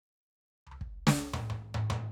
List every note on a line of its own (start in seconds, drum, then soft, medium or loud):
0.67 floor tom medium
0.71 floor tom medium
0.81 kick medium
1.07 snare loud
1.34 high tom loud
1.50 high tom medium
1.74 high tom loud
1.90 high tom loud